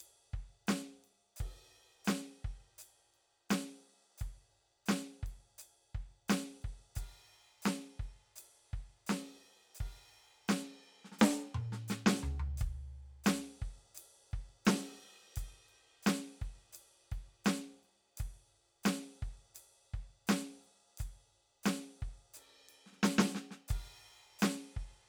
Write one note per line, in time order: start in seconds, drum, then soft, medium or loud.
0.01 ride soft
0.34 kick soft
0.68 snare loud
0.68 hi-hat pedal medium
0.68 ride soft
1.04 ride soft
1.37 kick soft
1.37 hi-hat pedal medium
1.37 crash soft
2.05 snare loud
2.05 hi-hat pedal medium
2.09 ride medium
2.45 kick soft
2.79 hi-hat pedal medium
2.79 ride soft
3.14 ride soft
3.50 snare loud
3.50 hi-hat pedal medium
3.50 ride medium
4.18 kick soft
4.18 hi-hat pedal soft
4.18 ride soft
4.86 snare loud
4.86 hi-hat pedal medium
4.86 ride medium
5.23 kick soft
5.23 ride soft
5.59 hi-hat pedal medium
5.59 ride soft
5.94 kick soft
5.94 ride soft
6.29 snare loud
6.29 hi-hat pedal medium
6.29 ride medium
6.62 kick soft
6.62 ride soft
6.96 kick soft
6.96 hi-hat pedal medium
6.96 crash soft
7.62 snare loud
7.62 hi-hat pedal medium
7.62 ride medium
8.00 kick soft
8.00 ride soft
8.36 hi-hat pedal medium
8.36 ride medium
8.73 kick soft
8.73 ride soft
9.07 snare medium
9.07 hi-hat pedal medium
9.07 crash soft
9.43 ride soft
9.75 hi-hat pedal medium
9.81 kick soft
9.81 crash soft
10.14 ride soft
10.49 snare loud
10.49 hi-hat pedal medium
10.49 ride soft
10.85 ride soft
11.05 snare soft
11.12 snare soft
11.19 snare soft
11.19 hi-hat pedal medium
11.22 snare loud
11.55 mid tom medium
11.73 snare soft
11.89 snare medium
11.89 hi-hat pedal medium
12.07 snare loud
12.23 floor tom medium
12.40 floor tom medium
12.58 kick medium
12.58 hi-hat pedal medium
12.58 ride soft
13.24 snare loud
13.24 hi-hat pedal medium
13.24 ride medium
13.62 kick soft
13.62 ride soft
13.95 hi-hat pedal medium
13.95 ride medium
14.32 kick soft
14.32 ride soft
14.66 snare loud
14.66 hi-hat pedal medium
14.66 crash medium
15.36 kick soft
15.36 hi-hat pedal medium
15.36 ride medium
15.69 ride soft
16.03 snare loud
16.03 hi-hat pedal soft
16.08 ride medium
16.42 kick soft
16.42 ride soft
16.73 hi-hat pedal medium
16.73 ride medium
17.12 kick soft
17.12 ride soft
17.45 snare loud
17.45 hi-hat pedal medium
17.45 ride soft
17.84 ride soft
18.18 kick soft
18.18 hi-hat pedal medium
18.18 ride medium
18.49 ride soft
18.84 snare loud
18.84 hi-hat pedal medium
18.84 ride medium
19.23 kick soft
19.23 ride soft
19.55 hi-hat pedal soft
19.55 ride medium
19.94 kick soft
19.94 ride soft
20.27 snare loud
20.27 hi-hat pedal medium
20.27 ride medium
20.64 ride soft
20.98 kick soft
20.98 hi-hat pedal medium
20.98 ride soft
21.64 snare loud
21.64 hi-hat pedal medium
21.64 ride medium
22.01 kick soft
22.01 ride soft
22.34 hi-hat pedal medium
22.34 ride soft
22.56 ride soft
22.69 ride soft
22.87 snare soft
22.93 snare soft
22.97 snare soft
23.01 snare soft
23.03 snare loud
23.03 hi-hat pedal medium
23.19 snare loud
23.35 snare medium
23.51 snare soft
23.68 kick medium
23.68 hi-hat pedal medium
23.68 crash soft
24.39 snare loud
24.39 hi-hat pedal medium
24.39 ride medium
24.77 kick soft